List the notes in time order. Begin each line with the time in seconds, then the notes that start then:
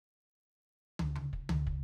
0.99 floor tom, high tom
1.16 floor tom, high tom
1.33 kick
1.49 floor tom, high tom
1.67 kick